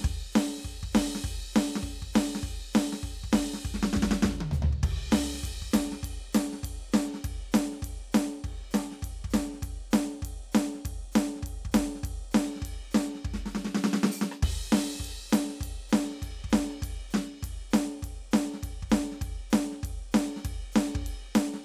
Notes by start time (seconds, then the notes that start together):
0.01 kick, snare
0.32 snare, hi-hat pedal
0.36 crash
0.58 snare
0.65 kick
0.83 kick
0.93 snare, hi-hat pedal, crash
1.15 snare
1.24 kick
1.53 snare, hi-hat pedal, crash
1.76 snare
1.83 kick
2.02 kick
2.13 snare, hi-hat pedal, crash
2.35 snare
2.43 kick
2.64 kick
2.73 snare, hi-hat pedal, crash
2.93 snare
3.03 kick
3.24 kick
3.31 snare, hi-hat pedal, crash
3.54 snare
3.61 hi-hat pedal
3.65 kick
3.74 snare
3.83 snare
3.93 kick, snare, hi-hat pedal
4.03 snare
4.11 snare
4.23 kick, snare, hi-hat pedal
4.31 high tom
4.41 high tom
4.52 floor tom, hi-hat pedal
4.62 floor tom
4.73 kick
4.83 kick, ride
5.12 snare, hi-hat pedal, crash
5.34 snare
5.44 kick, ride
5.62 kick
5.71 snare, hi-hat pedal, ride
5.92 snare
6.03 kick, ride
6.33 snare, hi-hat pedal, ride
6.53 snare
6.63 kick, ride
6.92 snare, hi-hat pedal, ride
7.14 snare
7.24 kick, ride
7.52 snare, hi-hat pedal, ride
7.72 snare
7.77 snare
7.83 kick, ride
8.12 snare, hi-hat pedal, ride
8.34 cross-stick
8.44 kick, ride
8.71 snare, hi-hat pedal, ride
8.92 snare
9.03 kick, ride
9.25 kick
9.30 snare, hi-hat pedal
9.35 ride
9.54 snare
9.63 kick, ride
9.91 snare, hi-hat pedal, ride
10.13 snare
10.22 kick, ride
10.52 snare, hi-hat pedal, ride
10.75 snare
10.85 kick, ride
11.12 snare, hi-hat pedal, ride
11.36 snare
11.43 kick, ride
11.65 kick
11.72 snare, hi-hat pedal, ride
11.95 snare
12.04 kick, ride
12.26 kick
12.31 snare, hi-hat pedal, ride
12.56 snare
12.62 kick, ride
12.91 snare, hi-hat pedal, ride
13.15 snare
13.25 kick, ride
13.34 snare
13.46 snare
13.50 hi-hat pedal
13.55 snare
13.65 snare
13.75 snare
13.82 snare, hi-hat pedal
13.93 snare
14.04 snare
14.12 open hi-hat
14.22 snare
14.32 cross-stick
14.43 kick, crash
14.72 snare, hi-hat pedal, crash
14.77 snare
14.95 snare
15.00 kick
15.05 ride
15.29 snare, hi-hat pedal
15.34 ride
15.49 snare
15.61 kick, ride
15.89 snare, hi-hat pedal, ride
16.10 snare
16.22 kick, ride
16.44 kick
16.50 snare, hi-hat pedal, ride
16.70 cross-stick
16.82 kick, ride
17.11 snare, hi-hat pedal, ride
17.43 kick, ride
17.71 snare, hi-hat pedal, ride
18.03 kick, ride
18.31 snare, hi-hat pedal, ride
18.54 snare
18.63 kick, ride
18.83 kick
18.90 snare, hi-hat pedal, ride
19.12 snare
19.21 kick, ride
19.50 snare, hi-hat pedal, ride
19.72 snare
19.83 kick, ride
20.12 snare, hi-hat pedal, ride
20.37 snare
20.45 kick, ride
20.72 snare, hi-hat pedal, ride
20.95 kick
21.07 ride
21.35 snare, hi-hat pedal, ride
21.54 snare